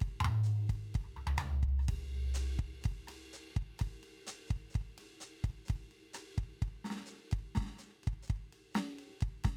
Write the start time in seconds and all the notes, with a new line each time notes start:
0.01 kick, ride
0.08 kick
0.21 mid tom
0.25 mid tom
0.34 mid tom
0.44 hi-hat pedal, ride
0.67 kick, hi-hat pedal
0.71 ride
0.75 kick
0.95 kick, ride
1.01 kick, floor tom
1.17 floor tom
1.27 floor tom
1.38 hi-hat pedal, floor tom
1.63 kick
1.69 kick
1.80 cross-stick, hi-hat pedal
1.89 kick, ride
1.95 kick
2.34 snare, hi-hat pedal, ride
2.59 kick
2.65 kick
2.82 hi-hat pedal, ride
2.86 kick
2.92 kick
3.08 cross-stick, snare, ride
3.33 hi-hat pedal
3.57 kick, ride
3.62 kick
3.78 kick, cross-stick, snare, hi-hat pedal, ride
3.87 kick
4.03 ride
4.18 snare
4.27 snare, hi-hat pedal, ride
4.48 kick, hi-hat pedal, ride
4.56 kick
4.70 hi-hat pedal
4.75 kick, ride
4.81 kick
4.98 snare, ride
5.21 hi-hat pedal, ride
5.44 kick, ride
5.50 kick
5.66 snare, hi-hat pedal, ride
5.70 kick
5.76 kick
5.92 ride
6.03 snare
6.14 cross-stick, snare, hi-hat pedal, ride
6.38 kick, ride
6.44 kick
6.62 kick, ride
6.68 kick
6.85 snare, ride
6.91 snare
6.96 snare
7.01 snare
7.06 snare, hi-hat pedal, ride
7.12 snare
7.19 snare
7.25 snare
7.29 snare, ride
7.33 kick
7.39 kick
7.56 kick, snare, ride
7.61 kick, snare
7.70 snare
7.75 snare, hi-hat pedal
7.80 snare, ride
7.83 snare
7.86 snare
7.88 snare
7.94 snare
8.04 kick, ride
8.13 kick
8.23 hi-hat pedal
8.28 kick, ride
8.36 kick
8.53 ride
8.72 snare, hi-hat pedal, ride
8.99 ride
9.09 snare
9.21 kick, ride
9.28 kick
9.44 kick, snare, ride